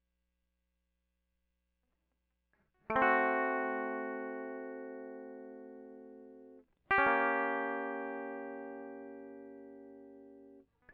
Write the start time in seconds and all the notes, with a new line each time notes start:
2.91 A3
2.96 C4
3.03 F#4
6.91 G4
6.99 C#4
7.07 A#3